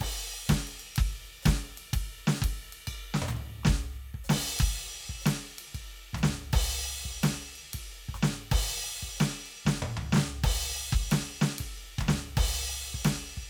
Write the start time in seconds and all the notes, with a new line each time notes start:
0.01 kick, crash
0.46 kick, snare, hi-hat pedal, ride
0.67 ride
0.80 ride
0.91 snare
0.96 kick, ride
1.43 kick, snare, hi-hat pedal, ride
1.78 ride
1.93 kick, ride
2.27 snare
2.35 hi-hat pedal
2.42 kick, ride
2.73 ride
2.88 kick, ride bell
3.14 snare
3.22 high tom
3.28 floor tom, hi-hat pedal
3.37 ride
3.64 kick, snare, high tom
4.14 kick
4.24 hi-hat pedal
4.30 snare, crash
4.59 kick, ride
4.74 snare
4.80 snare
5.09 kick
5.21 hi-hat pedal
5.26 snare, ride
5.59 ride
5.67 snare
5.72 kick, snare, ride bell
6.14 kick, floor tom, hi-hat pedal
6.23 snare
6.53 kick, crash
6.67 snare
7.05 kick
7.22 snare, hi-hat pedal, ride
7.56 ride
7.62 snare
7.66 snare
7.74 kick, ride
8.09 kick
8.14 hi-hat pedal, high tom
8.23 snare
8.52 kick, crash
8.70 snare
8.77 snare
8.79 snare
9.03 kick
9.16 hi-hat pedal
9.20 snare, ride bell
9.46 ride bell
9.66 kick, snare
9.82 high tom
9.97 floor tom
10.13 snare
10.16 snare
10.44 kick, crash
10.65 snare
10.68 snare
10.70 snare
10.93 kick
11.09 snare, hi-hat pedal, ride
11.42 snare
11.59 kick, ride
11.99 kick, floor tom, hi-hat pedal
12.08 snare
12.37 kick, crash
12.53 snare
12.57 snare
12.64 snare
12.94 kick
12.99 hi-hat pedal
13.05 snare, ride
13.37 kick